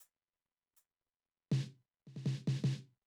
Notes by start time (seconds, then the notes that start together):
0.00 hi-hat pedal
0.76 hi-hat pedal
1.52 snare
2.07 snare
2.16 snare
2.26 snare
2.47 snare
2.64 snare